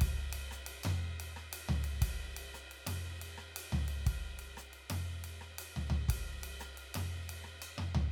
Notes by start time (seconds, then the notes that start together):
0.01 kick, ride
0.33 ride
0.51 cross-stick, hi-hat pedal
0.66 ride
0.83 mid tom, ride bell
1.20 ride
1.36 cross-stick
1.53 hi-hat pedal, ride
1.69 floor tom
1.84 ride
2.02 kick, ride
2.37 ride
2.54 cross-stick, hi-hat pedal
2.71 ride
2.87 mid tom, ride
3.22 ride
3.38 cross-stick
3.56 hi-hat pedal, ride
3.72 floor tom
3.88 ride
4.06 kick, ride
4.39 ride
4.57 cross-stick, hi-hat pedal
4.73 ride
4.90 mid tom, ride
5.24 ride
5.41 cross-stick
5.58 hi-hat pedal, ride
5.76 floor tom
5.90 floor tom
6.09 kick, ride
6.43 ride
6.59 cross-stick, hi-hat pedal
6.77 ride
6.94 mid tom, ride
7.29 ride
7.44 cross-stick
7.62 hi-hat pedal, ride bell
7.78 mid tom
7.95 floor tom